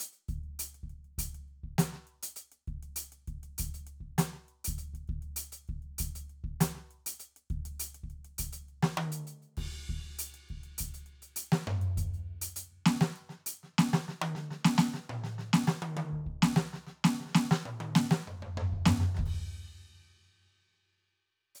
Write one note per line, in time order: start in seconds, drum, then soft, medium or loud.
0.00 closed hi-hat loud
0.13 closed hi-hat soft
0.29 closed hi-hat soft
0.29 kick medium
0.44 closed hi-hat soft
0.60 closed hi-hat loud
0.75 closed hi-hat soft
0.84 kick soft
0.90 closed hi-hat soft
1.05 closed hi-hat soft
1.19 closed hi-hat loud
1.19 kick medium
1.30 kick soft
1.35 closed hi-hat soft
1.49 closed hi-hat soft
1.64 kick soft
1.79 closed hi-hat loud
1.79 snare loud
1.93 snare soft
2.08 closed hi-hat soft
2.23 closed hi-hat loud
2.37 closed hi-hat medium
2.52 closed hi-hat soft
2.68 kick medium
2.68 closed hi-hat soft
2.83 closed hi-hat soft
2.96 closed hi-hat loud
3.13 closed hi-hat soft
3.28 kick medium
3.28 closed hi-hat soft
3.44 closed hi-hat soft
3.59 closed hi-hat loud
3.59 kick medium
3.75 closed hi-hat soft
3.87 closed hi-hat soft
4.01 kick soft
4.19 closed hi-hat loud
4.19 snare loud
4.34 snare soft
4.49 closed hi-hat soft
4.65 closed hi-hat loud
4.65 kick medium
4.79 closed hi-hat medium
4.94 kick soft
4.94 closed hi-hat soft
5.08 kick medium
5.08 closed hi-hat soft
5.23 closed hi-hat soft
5.37 closed hi-hat loud
5.53 closed hi-hat medium
5.68 kick medium
5.68 closed hi-hat soft
5.83 closed hi-hat soft
5.99 closed hi-hat loud
5.99 kick medium
6.16 closed hi-hat medium
6.30 closed hi-hat soft
6.45 kick medium
6.61 closed hi-hat loud
6.61 snare loud
6.76 snare soft
6.91 closed hi-hat soft
7.07 closed hi-hat loud
7.20 closed hi-hat medium
7.37 closed hi-hat soft
7.51 kick medium
7.51 closed hi-hat soft
7.66 closed hi-hat medium
7.80 closed hi-hat loud
7.95 closed hi-hat soft
8.04 kick soft
8.11 closed hi-hat soft
8.25 closed hi-hat soft
8.39 closed hi-hat loud
8.39 kick medium
8.53 closed hi-hat medium
8.69 closed hi-hat soft
8.83 snare loud
8.98 high tom loud
9.12 closed hi-hat medium
9.28 closed hi-hat soft
9.43 closed hi-hat soft
9.58 kick medium
9.58 crash medium
9.73 closed hi-hat soft
9.90 kick medium
10.04 closed hi-hat soft
10.19 closed hi-hat loud
10.35 closed hi-hat soft
10.49 kick soft
10.49 closed hi-hat soft
10.64 closed hi-hat soft
10.79 closed hi-hat loud
10.79 kick medium
10.95 closed hi-hat soft
11.07 closed hi-hat soft
11.23 closed hi-hat medium
11.37 closed hi-hat loud
11.53 snare loud
11.68 floor tom loud
11.82 closed hi-hat soft
11.98 closed hi-hat medium
11.98 kick medium
12.14 closed hi-hat soft
12.42 closed hi-hat loud
12.57 closed hi-hat loud
12.86 snare loud
13.02 snare loud
13.16 closed hi-hat soft
13.30 snare soft
13.47 closed hi-hat loud
13.64 snare soft
13.79 snare loud
13.94 snare loud
14.09 snare medium
14.22 high tom loud
14.36 snare medium
14.51 snare medium
14.65 snare loud
14.79 snare loud
14.94 snare medium
15.10 mid tom loud
15.24 snare medium
15.39 snare medium
15.54 snare loud
15.68 snare loud
15.83 high tom loud
15.97 high tom loud
16.13 kick soft
16.27 kick medium
16.43 snare loud
16.57 snare loud
16.74 snare medium
16.87 snare soft
17.05 snare loud
17.21 snare soft
17.27 snare soft
17.35 snare loud
17.52 snare loud
17.66 mid tom medium
17.81 high tom loud
17.96 snare loud
18.12 snare loud
18.28 floor tom medium
18.43 floor tom medium
18.58 floor tom loud
18.73 kick soft
18.86 snare loud
18.86 floor tom loud
19.01 snare medium
19.15 snare soft
19.15 high tom soft
19.20 kick medium
19.26 crash medium
21.55 hi-hat pedal medium